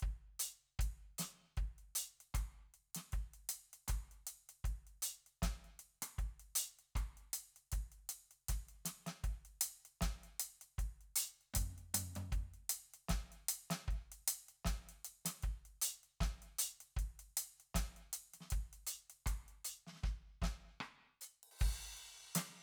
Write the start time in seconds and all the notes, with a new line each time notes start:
0.01 kick, closed hi-hat
0.40 closed hi-hat
0.80 kick, closed hi-hat
1.19 closed hi-hat, snare
1.58 kick, closed hi-hat
1.79 closed hi-hat
1.96 closed hi-hat
2.21 closed hi-hat
2.35 kick, cross-stick, closed hi-hat
2.75 closed hi-hat
2.95 snare, closed hi-hat
3.13 kick, closed hi-hat
3.34 closed hi-hat
3.50 closed hi-hat
3.74 closed hi-hat
3.88 kick, cross-stick, closed hi-hat
4.12 closed hi-hat
4.27 closed hi-hat
4.50 closed hi-hat
4.65 kick, closed hi-hat
4.87 closed hi-hat
5.03 closed hi-hat
5.27 closed hi-hat
5.43 kick, snare, closed hi-hat
5.65 closed hi-hat
5.80 closed hi-hat
6.03 cross-stick, closed hi-hat
6.19 kick, closed hi-hat
6.40 closed hi-hat
6.56 closed hi-hat
6.79 closed hi-hat
6.96 kick, cross-stick, closed hi-hat
7.18 closed hi-hat
7.34 closed hi-hat
7.57 closed hi-hat
7.72 kick, closed hi-hat
7.92 closed hi-hat
8.10 closed hi-hat
8.32 closed hi-hat
8.49 kick, snare, closed hi-hat
8.69 closed hi-hat
8.86 snare, closed hi-hat
9.07 snare, closed hi-hat
9.24 kick, closed hi-hat
9.46 closed hi-hat
9.62 closed hi-hat
9.86 closed hi-hat
10.02 kick, snare, closed hi-hat
10.24 closed hi-hat
10.40 closed hi-hat
10.62 closed hi-hat
10.79 kick, closed hi-hat
11.01 closed hi-hat
11.16 closed hi-hat
11.42 closed hi-hat
11.54 kick, closed hi-hat, high tom
11.79 closed hi-hat
11.95 closed hi-hat, high tom
12.16 closed hi-hat, high tom
12.33 kick, closed hi-hat
12.54 closed hi-hat
12.70 closed hi-hat
12.94 closed hi-hat
13.09 kick, snare, closed hi-hat
13.33 closed hi-hat
13.49 closed hi-hat
13.71 snare, closed hi-hat
13.88 kick, closed hi-hat
14.12 closed hi-hat
14.28 closed hi-hat
14.49 closed hi-hat
14.65 kick, snare, closed hi-hat
14.89 closed hi-hat
15.05 closed hi-hat
15.26 snare, closed hi-hat
15.43 kick, closed hi-hat
15.66 closed hi-hat
15.82 closed hi-hat
16.04 closed hi-hat
16.21 kick, snare, closed hi-hat
16.43 closed hi-hat
16.59 closed hi-hat
16.81 closed hi-hat
16.97 kick, closed hi-hat
17.20 closed hi-hat
17.38 closed hi-hat
17.61 closed hi-hat
17.75 kick, snare, closed hi-hat
17.97 closed hi-hat
18.14 closed hi-hat
18.34 snare, closed hi-hat
18.41 snare
18.44 snare
18.51 kick, closed hi-hat
18.74 closed hi-hat
18.87 closed hi-hat
19.10 closed hi-hat
19.27 kick, cross-stick, closed hi-hat
19.49 closed hi-hat
19.65 closed hi-hat
19.87 snare
19.92 snare
19.96 snare
20.00 snare
20.03 kick, snare
20.42 kick, snare, ride
20.81 cross-stick
21.22 hi-hat pedal
21.44 crash
21.52 crash
21.60 kick, crash
21.97 closed hi-hat
22.36 snare, closed hi-hat